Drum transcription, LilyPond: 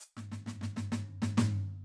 \new DrumStaff \drummode { \time 4/4 \tempo 4 = 130 \tuplet 3/2 { hhp8 <tomfh sn>8 <tomfh sn>8 <tomfh sn>8 <tomfh sn>8 <tomfh sn>8 <sn tomfh>8 r8 <tomfh sn>8 } <tomfh sn>4 | }